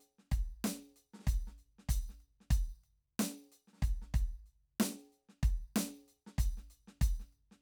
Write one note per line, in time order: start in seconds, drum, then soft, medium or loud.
0.01 closed hi-hat soft
0.19 snare soft
0.24 snare soft
0.32 closed hi-hat soft
0.32 kick medium
0.65 closed hi-hat medium
0.65 snare loud
0.97 closed hi-hat soft
1.14 snare soft
1.20 snare soft
1.23 snare soft
1.26 closed hi-hat medium
1.26 kick medium
1.26 snare soft
1.48 snare soft
1.59 closed hi-hat soft
1.79 snare soft
1.89 closed hi-hat loud
1.89 kick medium
2.10 snare soft
2.21 closed hi-hat soft
2.41 snare soft
2.51 closed hi-hat medium
2.51 kick medium
2.84 closed hi-hat soft
3.20 closed hi-hat loud
3.20 snare loud
3.53 closed hi-hat soft
3.68 snare soft
3.74 snare soft
3.77 snare soft
3.79 snare soft
3.83 closed hi-hat soft
3.83 kick medium
4.02 snare soft
4.15 closed hi-hat soft
4.15 kick medium
4.47 closed hi-hat soft
4.81 closed hi-hat medium
4.81 snare loud
5.13 closed hi-hat soft
5.30 snare soft
5.44 closed hi-hat medium
5.44 kick medium
5.77 closed hi-hat loud
5.77 snare loud
6.09 closed hi-hat soft
6.27 snare soft
6.39 closed hi-hat medium
6.39 kick medium
6.58 snare soft
6.71 closed hi-hat soft
6.88 snare soft
7.02 closed hi-hat medium
7.02 kick medium
7.20 snare soft
7.33 closed hi-hat soft
7.52 snare soft